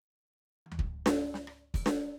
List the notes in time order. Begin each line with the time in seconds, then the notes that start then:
0.66 high tom
0.72 floor tom
0.79 kick
1.06 snare
1.34 snare
1.47 cross-stick
1.74 open hi-hat, kick
1.86 snare, hi-hat pedal
2.00 snare